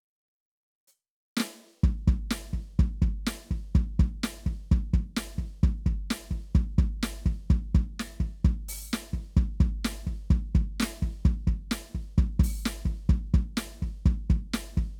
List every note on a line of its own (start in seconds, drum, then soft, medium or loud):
0.87 hi-hat pedal soft
1.37 snare loud
1.40 snare loud
1.83 kick loud
2.08 kick loud
2.31 snare loud
2.46 snare soft
2.53 kick medium
2.79 kick loud
3.02 kick loud
3.27 snare loud
3.34 snare soft
3.43 snare soft
3.51 kick medium
3.75 kick loud
3.99 kick loud
4.23 snare loud
4.39 snare soft
4.46 kick medium
4.71 kick loud
4.94 kick loud
5.17 snare loud
5.38 kick medium
5.63 kick loud
5.86 kick loud
6.10 snare loud
6.27 snare soft
6.31 kick medium
6.55 kick loud
6.78 kick loud
7.03 snare loud
7.19 snare soft
7.26 kick loud
7.50 kick loud
7.75 kick loud
7.99 snare loud
8.17 kick medium
8.17 snare soft
8.45 kick loud
8.68 open hi-hat loud
8.91 snare loud
8.91 hi-hat pedal soft
9.01 snare soft
9.09 snare soft
9.13 kick medium
9.37 kick loud
9.60 kick loud
9.85 snare loud
9.92 snare soft
10.07 kick medium
10.07 snare soft
10.30 kick loud
10.55 kick loud
10.80 snare loud
10.82 snare loud
11.02 kick medium
11.25 kick loud
11.47 kick loud
11.71 snare loud
11.95 kick medium
12.18 kick loud
12.39 kick loud
12.43 open hi-hat loud
12.65 snare loud
12.65 hi-hat pedal soft
12.82 kick medium
12.82 snare soft
13.09 kick loud
13.34 kick loud
13.57 snare loud
13.74 snare soft
13.82 kick medium
14.06 kick loud
14.30 kick loud
14.54 snare loud
14.71 snare soft
14.77 kick medium